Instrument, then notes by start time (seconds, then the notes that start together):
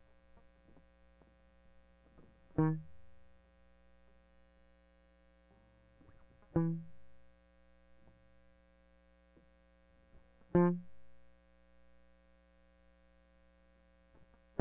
electric guitar
2.60 D#3
6.57 E3
10.56 F3